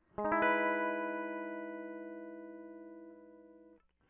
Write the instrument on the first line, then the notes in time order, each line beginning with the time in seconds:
electric guitar
0.19 G#3
0.25 D#4
0.32 E4
0.42 B4